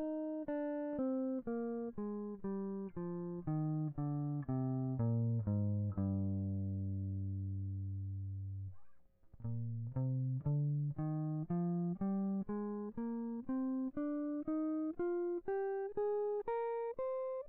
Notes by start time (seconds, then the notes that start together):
0.00 D#4
0.49 D4
1.00 C4
1.48 A#3
1.99 G#3
2.46 G3
2.98 F3
3.49 D#3
4.00 D3
4.51 C3
5.02 A#2
5.50 G#2
6.00 G2
9.01 G#2
9.51 A#2
9.98 C3
10.48 D3
11.00 D#3
11.52 F3
12.03 G3
12.50 G#3
12.99 A#3
13.50 C4
13.98 D4
14.49 D#4
15.00 F4
15.49 G4
15.98 G#4
16.49 A#4
17.00 C5